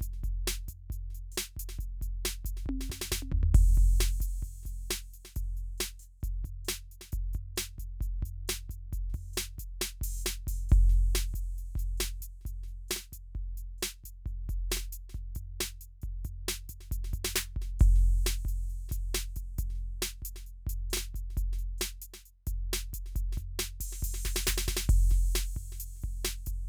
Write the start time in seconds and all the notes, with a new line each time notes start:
0.01 closed hi-hat, kick
0.13 snare
0.24 closed hi-hat, kick
0.47 snare
0.68 closed hi-hat, kick
0.90 closed hi-hat, kick
1.10 snare
1.15 closed hi-hat
1.32 hi-hat pedal
1.37 snare
1.57 closed hi-hat, kick
1.69 snare
1.79 closed hi-hat, kick
2.02 closed hi-hat, kick
2.25 snare
2.45 closed hi-hat, kick
2.57 snare
2.66 kick, high tom
2.81 snare
2.90 kick, snare
3.01 snare
3.12 kick, snare
3.22 high tom
3.32 kick, floor tom
3.43 floor tom
3.55 kick, crash
3.75 open hi-hat, kick
3.97 snare, hi-hat pedal
4.20 closed hi-hat, kick
4.43 closed hi-hat, kick
4.63 closed hi-hat, kick, snare
4.91 snare
5.14 closed hi-hat
5.25 snare
5.36 closed hi-hat, kick
5.57 closed hi-hat
5.78 snare, hi-hat pedal
5.99 closed hi-hat, hi-hat pedal
6.20 closed hi-hat, kick, hi-hat pedal
6.45 closed hi-hat, kick
6.65 snare, hi-hat pedal
6.91 closed hi-hat
7.01 snare
7.12 closed hi-hat, kick
7.33 closed hi-hat, kick
7.56 snare, hi-hat pedal
7.78 closed hi-hat, kick
8.01 closed hi-hat, kick
8.23 closed hi-hat, kick
8.48 snare, hi-hat pedal
8.70 kick, closed hi-hat
8.93 closed hi-hat, kick
9.10 snare
9.14 open hi-hat, kick
9.33 snare, hi-hat pedal
9.59 closed hi-hat, kick
9.81 snare
10.01 open hi-hat, kick
10.22 hi-hat pedal
10.26 snare
10.47 open hi-hat, kick
10.69 kick, hi-hat pedal, crash
10.89 closed hi-hat, snare
11.15 snare
11.34 closed hi-hat, kick
11.58 closed hi-hat
11.75 closed hi-hat, kick, snare
11.97 snare, hi-hat pedal
12.21 closed hi-hat, kick
12.41 snare
12.45 closed hi-hat, kick
12.63 snare
12.68 closed hi-hat
12.88 snare, hi-hat pedal
12.96 snare
13.13 closed hi-hat, kick
13.35 kick, closed hi-hat
13.57 closed hi-hat
13.78 hi-hat pedal
13.83 snare
14.04 closed hi-hat, kick
14.26 closed hi-hat, kick
14.49 closed hi-hat, kick
14.71 snare, hi-hat pedal
14.77 snare
14.92 closed hi-hat
15.09 snare
15.14 closed hi-hat, kick
15.35 closed hi-hat, kick
15.60 snare
15.81 closed hi-hat
16.02 closed hi-hat, kick
16.25 closed hi-hat, kick
16.48 snare
16.69 closed hi-hat, kick
16.81 snare
16.91 closed hi-hat, kick
17.04 snare
17.13 closed hi-hat, kick
17.25 snare
17.35 snare, hi-hat pedal
17.56 kick
17.62 snare
17.79 kick, hi-hat pedal, crash
17.96 snare
18.00 closed hi-hat
18.26 snare
18.45 kick, closed hi-hat
18.70 closed hi-hat
18.89 closed hi-hat, kick, snare
19.15 snare
19.36 kick, closed hi-hat
19.58 closed hi-hat, kick
19.70 snare
19.75 snare, closed hi-hat
20.02 snare
20.22 closed hi-hat, kick
20.36 snare
20.46 closed hi-hat
20.67 closed hi-hat, kick
20.90 snare, hi-hat pedal
20.97 snare
21.15 kick, closed hi-hat
21.30 snare
21.37 closed hi-hat, kick
21.53 snare
21.59 closed hi-hat
21.78 snare, hi-hat pedal
22.02 closed hi-hat
22.14 snare
22.25 closed hi-hat
22.47 closed hi-hat, kick
22.73 snare
22.93 closed hi-hat, kick
23.06 snare
23.12 closed hi-hat, kick, snare
23.32 snare
23.37 open hi-hat, kick
23.59 snare
23.80 open hi-hat, kick
23.92 snare
24.03 open hi-hat, kick
24.14 snare
24.25 kick, snare
24.36 snare
24.47 kick, snare
24.58 snare
24.68 kick, snare
24.77 snare
24.89 kick, crash
25.09 open hi-hat, kick, snare
25.32 closed hi-hat, snare, hi-hat pedal
25.56 kick, closed hi-hat
25.72 snare
25.80 closed hi-hat
25.96 snare
26.02 closed hi-hat, kick
26.25 snare
26.46 closed hi-hat, kick